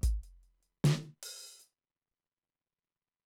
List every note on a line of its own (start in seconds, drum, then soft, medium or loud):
0.01 closed hi-hat loud
0.01 kick medium
0.01 snare soft
0.23 closed hi-hat soft
0.43 closed hi-hat soft
0.63 closed hi-hat soft
0.84 closed hi-hat medium
0.84 snare loud
1.03 closed hi-hat soft
1.23 open hi-hat loud
1.59 hi-hat pedal medium